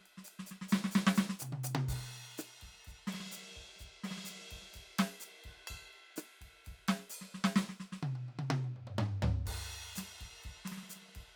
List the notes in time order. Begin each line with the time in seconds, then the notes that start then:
0.01 snare
0.06 ride
0.18 snare
0.25 hi-hat pedal, ride
0.39 snare
0.47 hi-hat pedal
0.51 snare
0.62 snare
0.69 hi-hat pedal
0.73 snare
0.84 snare
0.91 hi-hat pedal
0.95 snare
1.07 snare
1.15 snare, hi-hat pedal
1.30 snare
1.39 hi-hat pedal, high tom
1.53 high tom
1.64 kick, hi-hat pedal, high tom
1.75 high tom
1.88 kick, hi-hat pedal, high tom, crash
1.95 kick
2.38 cross-stick, hi-hat pedal, ride
2.62 kick, snare, ride
2.67 kick, snare
2.73 snare
2.76 snare
2.85 kick, hi-hat pedal, ride
2.92 kick
3.07 snare, ride
3.13 snare, ride
3.20 snare
3.26 snare
3.32 snare, hi-hat pedal
3.37 snare
3.43 snare
3.47 snare
3.51 snare
3.55 kick, snare
3.59 snare
3.62 snare
3.64 snare
3.76 snare, hi-hat pedal
3.81 kick
3.85 kick
4.04 snare, ride
4.11 snare
4.18 snare
4.24 snare, hi-hat pedal
4.30 snare
4.36 snare
4.42 snare
4.48 kick, snare, ride
4.55 kick, snare
4.62 snare
4.73 kick, snare, hi-hat pedal, ride
4.81 kick
4.99 snare, ride
5.20 hi-hat pedal, ride
5.24 snare
5.31 snare
5.44 kick, ride
5.50 kick
5.68 kick, hi-hat pedal, ride bell
5.76 kick
5.93 ride
6.16 cross-stick, hi-hat pedal, ride
6.41 kick, snare, ride
6.49 snare
6.65 kick, hi-hat pedal, ride
6.88 snare, ride
6.99 snare
7.10 hi-hat pedal
7.21 snare
7.34 snare
7.44 snare
7.56 snare
7.69 snare
7.80 snare
7.93 snare
8.03 high tom
8.16 high tom
8.29 high tom
8.39 high tom
8.50 high tom
8.65 high tom
8.76 mid tom
8.87 mid tom
8.99 mid tom
9.23 floor tom
9.46 kick, crash
9.52 kick
9.96 snare, hi-hat pedal, ride
10.21 kick, ride
10.26 kick
10.33 snare
10.36 snare
10.41 kick, hi-hat pedal, ride
10.65 snare, ride
10.72 snare
10.77 snare
10.83 snare
10.90 snare, hi-hat pedal, ride
10.96 snare
11.02 snare
11.08 snare
11.14 kick, snare, ride
11.19 kick, snare
11.24 snare
11.27 snare